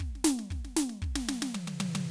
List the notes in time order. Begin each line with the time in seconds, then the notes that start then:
0.00 kick, snare
0.15 snare
0.24 snare
0.39 snare
0.50 kick, snare
0.64 snare
0.76 snare
0.89 snare
1.02 kick, snare
1.15 snare
1.29 snare
1.42 snare
1.54 high tom
1.67 high tom
1.80 high tom
1.95 high tom